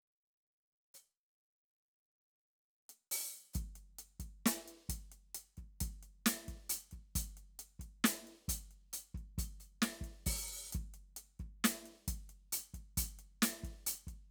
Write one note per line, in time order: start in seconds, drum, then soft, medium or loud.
0.94 hi-hat pedal medium
2.89 closed hi-hat medium
3.11 open hi-hat loud
3.53 kick soft
3.53 closed hi-hat medium
3.53 hi-hat pedal medium
3.75 closed hi-hat soft
3.99 closed hi-hat medium
4.20 kick soft
4.20 closed hi-hat medium
4.46 closed hi-hat loud
4.46 snare loud
4.68 closed hi-hat medium
4.89 kick soft
4.89 closed hi-hat loud
5.12 closed hi-hat soft
5.35 closed hi-hat loud
5.57 kick soft
5.57 closed hi-hat soft
5.80 kick soft
5.80 closed hi-hat loud
6.03 closed hi-hat soft
6.26 closed hi-hat loud
6.26 snare loud
6.48 kick soft
6.48 closed hi-hat soft
6.69 closed hi-hat loud
6.91 kick soft
6.91 closed hi-hat soft
7.15 closed hi-hat loud
7.15 kick soft
7.37 closed hi-hat soft
7.59 closed hi-hat medium
7.79 kick soft
7.79 closed hi-hat soft
8.04 closed hi-hat loud
8.04 snare loud
8.27 closed hi-hat soft
8.48 closed hi-hat loud
8.48 kick soft
8.71 closed hi-hat soft
8.93 closed hi-hat medium
9.14 kick soft
9.14 closed hi-hat soft
9.38 closed hi-hat medium
9.38 kick soft
9.60 closed hi-hat soft
9.82 snare loud
9.82 closed hi-hat medium
10.01 kick soft
10.01 closed hi-hat soft
10.26 open hi-hat loud
10.26 kick soft
10.70 closed hi-hat medium
10.70 hi-hat pedal soft
10.75 kick soft
10.94 closed hi-hat soft
11.16 closed hi-hat medium
11.39 kick soft
11.39 closed hi-hat soft
11.64 closed hi-hat loud
11.64 snare loud
11.85 closed hi-hat soft
12.08 kick soft
12.08 closed hi-hat loud
12.29 closed hi-hat soft
12.52 closed hi-hat loud
12.74 kick soft
12.74 closed hi-hat soft
12.97 closed hi-hat loud
12.97 kick soft
13.19 closed hi-hat soft
13.42 closed hi-hat loud
13.42 snare loud
13.63 kick soft
13.63 closed hi-hat soft
13.86 closed hi-hat loud
14.07 kick soft
14.07 closed hi-hat soft